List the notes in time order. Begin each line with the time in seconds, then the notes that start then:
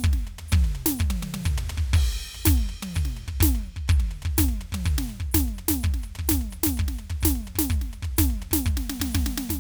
0.01 kick, hi-hat pedal
0.05 floor tom
0.14 snare
0.23 hi-hat pedal
0.28 floor tom
0.39 floor tom
0.49 hi-hat pedal, high tom
0.53 kick
0.65 floor tom
0.76 floor tom
0.87 snare
0.97 kick, floor tom, hi-hat pedal
1.11 high tom
1.18 hi-hat pedal
1.23 high tom
1.35 high tom
1.45 kick, floor tom, hi-hat pedal
1.58 floor tom
1.66 floor tom, hi-hat pedal
1.78 kick
1.94 kick, hi-hat pedal, crash
2.17 hi-hat pedal
2.35 floor tom
2.45 kick, snare, hi-hat pedal
2.58 floor tom
2.68 floor tom, hi-hat pedal
2.83 high tom
2.95 kick, floor tom, hi-hat pedal
3.06 snare
3.16 floor tom, hi-hat pedal
3.29 kick, floor tom
3.41 kick, snare, hi-hat pedal
3.56 floor tom
3.64 hi-hat pedal
3.77 kick
3.89 kick, floor tom, hi-hat pedal
4.00 high tom
4.12 floor tom, hi-hat pedal
4.23 kick, floor tom
4.38 kick, snare, hi-hat pedal
4.49 floor tom
4.59 floor tom, hi-hat pedal
4.73 kick, high tom
4.85 kick, floor tom, hi-hat pedal
4.99 snare
5.06 floor tom, hi-hat pedal
5.21 kick
5.32 kick, snare, hi-hat pedal
5.48 floor tom
5.54 hi-hat pedal
5.59 floor tom
5.69 kick, snare
5.81 kick, floor tom, hi-hat pedal
5.94 snare
6.03 floor tom, hi-hat pedal
6.16 kick, floor tom
6.28 kick, snare, hi-hat pedal
6.42 floor tom
6.51 floor tom, hi-hat pedal
6.64 kick, snare
6.74 floor tom, hi-hat pedal
6.80 kick
6.89 snare
6.95 hi-hat pedal
6.99 floor tom
7.10 kick, floor tom
7.21 kick, hi-hat pedal
7.26 snare
7.36 floor tom
7.43 hi-hat pedal
7.48 floor tom
7.56 kick, snare
7.69 kick, hi-hat pedal
7.74 floor tom
7.82 snare
7.92 floor tom, hi-hat pedal
8.03 kick, floor tom
8.17 kick, snare, hi-hat pedal
8.30 floor tom
8.39 floor tom, hi-hat pedal
8.52 kick, snare
8.64 kick, floor tom, hi-hat pedal
8.78 snare
8.86 hi-hat pedal
8.90 snare
9.00 kick, snare
9.12 kick, snare, hi-hat pedal
9.27 snare
9.35 snare, hi-hat pedal
9.50 kick, snare